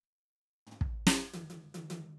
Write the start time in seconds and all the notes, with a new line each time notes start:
0.67 floor tom
0.71 floor tom
0.81 kick
1.07 snare
1.34 high tom
1.50 high tom
1.74 high tom
1.90 high tom